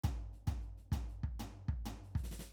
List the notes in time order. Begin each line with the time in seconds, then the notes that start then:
0.04 kick, floor tom
0.33 snare
0.47 kick, floor tom
0.61 snare
0.77 snare
0.92 kick, floor tom
1.09 snare
1.24 kick
1.40 floor tom
1.69 kick
1.86 floor tom
2.04 snare
2.09 snare
2.15 kick, snare
2.24 snare
2.31 snare
2.39 snare